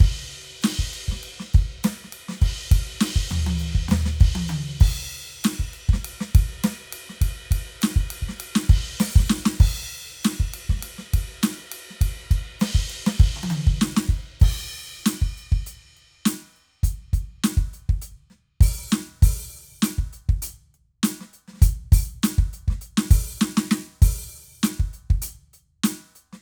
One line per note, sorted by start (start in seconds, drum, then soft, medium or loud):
0.01 kick loud
0.01 ride loud
0.63 snare loud
0.63 hi-hat pedal medium
0.63 ride loud
0.80 kick medium
0.93 hi-hat pedal soft
0.93 ride medium
1.09 kick medium
1.09 snare soft
1.24 hi-hat pedal soft
1.24 ride medium
1.41 snare medium
1.55 kick loud
1.55 ride bell medium
1.84 snare loud
1.84 hi-hat pedal medium
1.84 ride loud
2.05 snare soft
2.12 hi-hat pedal soft
2.12 ride loud
2.29 snare medium
2.32 snare medium
2.36 snare soft
2.42 kick loud
2.42 hi-hat pedal soft
2.42 ride loud
2.72 kick loud
2.72 ride loud
3.01 snare loud
3.01 hi-hat pedal medium
3.01 ride loud
3.17 kick medium
3.30 floor tom loud
3.30 hi-hat pedal medium
3.48 high tom loud
3.60 hi-hat pedal medium
3.60 ride medium
3.76 kick medium
3.89 snare loud
3.89 floor tom loud
3.89 hi-hat pedal medium
4.07 snare medium
4.20 kick loud
4.20 hi-hat pedal soft
4.20 ride loud
4.36 high tom loud
4.49 hi-hat pedal medium
4.49 mid tom loud
4.81 kick loud
4.81 hi-hat pedal soft
4.81 crash loud
5.45 snare loud
5.45 hi-hat pedal medium
5.45 ride loud
5.60 kick medium
5.74 hi-hat pedal soft
5.74 ride medium
5.90 kick loud
5.90 crash soft
5.94 snare medium
6.06 ride loud
6.22 snare medium
6.36 kick loud
6.36 ride loud
6.65 snare loud
6.65 hi-hat pedal medium
6.65 ride loud
6.86 kick soft
6.94 ride loud
7.10 snare soft
7.22 kick medium
7.22 hi-hat pedal medium
7.22 ride loud
7.52 kick medium
7.52 ride loud
7.82 snare loud
7.82 hi-hat pedal medium
7.82 ride loud
7.97 kick medium
8.10 hi-hat pedal soft
8.10 ride loud
8.23 kick medium
8.30 snare medium
8.39 hi-hat pedal soft
8.39 ride loud
8.56 snare loud
8.70 kick loud
8.70 ride loud
9.01 open hi-hat loud
9.01 snare loud
9.17 kick loud
9.17 snare soft
9.28 snare soft
9.31 snare loud
9.46 snare loud
9.61 kick loud
9.61 hi-hat pedal soft
9.61 crash loud
10.07 kick soft
10.24 snare loud
10.24 hi-hat pedal medium
10.24 ride loud
10.41 kick medium
10.54 hi-hat pedal soft
10.54 ride loud
10.70 kick medium
10.70 snare soft
10.76 snare soft
10.80 snare soft
10.83 snare soft
10.83 hi-hat pedal soft
10.83 ride loud
10.99 snare soft
11.14 kick medium
11.14 ride loud
11.43 snare loud
11.43 hi-hat pedal medium
11.43 ride loud
11.73 ride loud
11.91 snare soft
12.02 kick medium
12.02 hi-hat pedal soft
12.02 ride loud
12.32 kick medium
12.32 ride bell medium
12.61 snare loud
12.61 hi-hat pedal medium
12.61 ride loud
12.76 kick medium
12.90 hi-hat pedal medium
12.90 ride medium
13.08 snare loud
13.20 kick loud
13.20 ride loud
13.37 mid tom medium
13.44 high tom loud
13.50 hi-hat pedal medium
13.50 mid tom loud
13.68 kick loud
13.82 snare loud
13.82 hi-hat pedal medium
13.98 snare loud
14.10 kick medium
14.41 kick loud
14.41 hi-hat pedal medium
14.41 crash loud
14.98 kick soft
15.07 closed hi-hat loud
15.07 snare loud
15.23 kick medium
15.38 closed hi-hat soft
15.53 kick medium
15.67 closed hi-hat medium
15.98 closed hi-hat soft
16.27 closed hi-hat loud
16.27 snare loud
16.57 closed hi-hat soft
16.84 closed hi-hat loud
16.84 kick medium
17.14 closed hi-hat medium
17.14 kick medium
17.45 closed hi-hat loud
17.45 snare loud
17.58 kick medium
17.74 closed hi-hat soft
17.90 kick medium
18.03 closed hi-hat medium
18.12 kick soft
18.31 snare soft
18.62 open hi-hat loud
18.62 kick loud
18.92 snare loud
18.92 hi-hat pedal medium
19.23 open hi-hat loud
19.23 kick loud
19.73 kick soft
19.83 open hi-hat loud
19.83 snare loud
19.83 hi-hat pedal medium
19.99 kick medium
20.14 closed hi-hat soft
20.30 kick medium
20.43 closed hi-hat loud
20.75 closed hi-hat soft
21.04 closed hi-hat loud
21.04 snare loud
21.22 snare soft
21.34 closed hi-hat soft
21.49 snare soft
21.54 snare soft
21.58 snare soft
21.61 closed hi-hat loud
21.61 kick loud
21.61 snare soft
21.93 open hi-hat loud
21.93 kick loud
22.23 closed hi-hat loud
22.23 snare loud
22.23 hi-hat pedal soft
22.39 kick loud
22.54 closed hi-hat medium
22.69 kick medium
22.69 snare soft
22.82 closed hi-hat medium
22.98 snare loud
23.12 open hi-hat loud
23.12 kick loud
23.42 snare loud
23.42 hi-hat pedal medium
23.58 snare loud
23.72 snare loud
24.03 open hi-hat loud
24.03 kick loud
24.64 open hi-hat loud
24.64 snare loud
24.64 hi-hat pedal soft
24.80 kick medium
24.94 closed hi-hat soft
25.11 kick loud
25.23 closed hi-hat loud
25.54 closed hi-hat soft
25.85 closed hi-hat loud
25.85 snare loud
26.16 closed hi-hat soft
26.34 snare soft